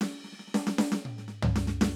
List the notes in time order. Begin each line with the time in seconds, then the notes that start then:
0.02 snare, ride
0.24 snare
0.32 snare
0.39 snare
0.47 snare
0.54 snare
0.67 snare
0.78 snare
0.92 snare
1.05 mid tom
1.18 snare
1.28 snare
1.43 floor tom
1.56 snare
1.67 snare
1.81 snare